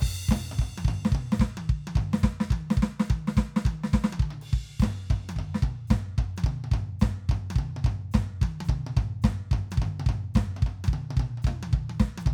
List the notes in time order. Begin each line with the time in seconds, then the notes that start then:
0.01 kick, crash
0.27 kick, hi-hat pedal
0.32 snare, floor tom
0.52 floor tom
0.60 kick
0.79 hi-hat pedal, high tom
0.86 kick, floor tom
1.06 snare
1.13 kick, mid tom
1.33 snare, hi-hat pedal
1.40 kick, snare
1.58 high tom
1.70 kick
1.88 high tom
1.96 kick, floor tom
2.14 snare
2.19 hi-hat pedal
2.24 kick, snare
2.41 snare
2.51 kick, high tom
2.71 snare, hi-hat pedal
2.78 kick
2.83 snare
3.01 snare
3.06 hi-hat pedal
3.11 kick, high tom
3.28 snare
3.35 kick, hi-hat pedal
3.39 snare
3.57 snare, hi-hat pedal
3.66 kick, high tom
3.85 snare
3.90 hi-hat pedal
3.94 kick, snare
4.05 snare
4.14 high tom
4.20 kick, high tom
4.32 mid tom
4.43 ride
4.54 kick
4.80 kick, snare, hi-hat pedal
4.85 floor tom
5.11 kick, floor tom
5.30 hi-hat pedal, high tom
5.37 kick, floor tom
5.56 snare
5.63 kick, mid tom
5.88 kick, snare, floor tom, hi-hat pedal
6.19 kick, floor tom
6.38 hi-hat pedal, high tom
6.45 kick, mid tom
6.65 mid tom
6.73 kick, floor tom
7.00 kick, snare, floor tom, hi-hat pedal
7.30 kick, floor tom
7.51 hi-hat pedal, high tom
7.57 kick, mid tom
7.77 mid tom
7.85 kick, floor tom
8.12 kick, snare, floor tom, hi-hat pedal
8.43 kick, high tom
8.62 hi-hat pedal, high tom
8.70 kick, mid tom
8.88 mid tom
8.98 kick, floor tom
9.23 kick, snare, floor tom, hi-hat pedal
9.52 kick, floor tom
9.72 hi-hat pedal, high tom
9.78 kick
9.83 floor tom
10.01 mid tom
10.07 kick, floor tom
10.35 kick, snare, floor tom, hi-hat pedal
10.57 floor tom
10.63 kick
10.67 floor tom
10.85 kick, hi-hat pedal, high tom
10.94 mid tom
11.12 mid tom
11.18 kick, mid tom
11.38 mid tom
11.43 kick, hi-hat pedal
11.48 floor tom
11.64 high tom
11.74 kick, mid tom
11.91 high tom
12.01 kick, snare
12.19 hi-hat pedal, high tom
12.27 kick, mid tom